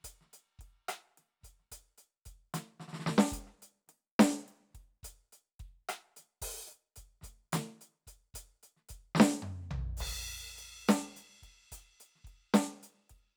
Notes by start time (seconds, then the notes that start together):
0.01 closed hi-hat, kick, snare
0.22 snare
0.27 snare
0.33 closed hi-hat, snare
0.60 kick, closed hi-hat
0.89 closed hi-hat, cross-stick
1.18 snare, closed hi-hat
1.42 closed hi-hat, kick, snare
1.60 snare
1.72 closed hi-hat, kick
1.99 closed hi-hat
2.26 closed hi-hat, kick
2.55 closed hi-hat, snare
2.81 snare
2.89 snare
2.94 snare
3.00 snare
3.07 snare
3.19 snare
3.29 kick, hi-hat pedal
3.34 closed hi-hat
3.39 kick
3.48 cross-stick
3.63 closed hi-hat
3.89 snare, closed hi-hat
4.20 open hi-hat, snare, hi-hat pedal
4.49 closed hi-hat
4.71 snare
4.75 kick, snare, closed hi-hat
5.04 closed hi-hat, kick, hi-hat pedal
5.33 closed hi-hat
5.60 kick, closed hi-hat
5.90 closed hi-hat, cross-stick
6.17 closed hi-hat, snare
6.43 open hi-hat, kick
6.68 closed hi-hat, hi-hat pedal
6.97 closed hi-hat, kick
7.22 closed hi-hat, kick, snare
7.53 closed hi-hat, snare
7.82 closed hi-hat
8.08 closed hi-hat, kick
8.35 closed hi-hat, kick
8.64 closed hi-hat
8.77 snare
8.90 closed hi-hat, kick
9.16 snare
9.21 snare
9.30 snare
9.43 mid tom
9.62 snare
9.72 floor tom
9.98 kick, hi-hat pedal, crash
10.07 kick
10.59 closed hi-hat
10.89 open hi-hat, snare
11.17 closed hi-hat, snare
11.43 kick, closed hi-hat
11.73 open hi-hat, kick
12.01 closed hi-hat
12.16 snare
12.25 kick, snare, closed hi-hat
12.55 closed hi-hat, snare
12.84 closed hi-hat
13.10 kick, closed hi-hat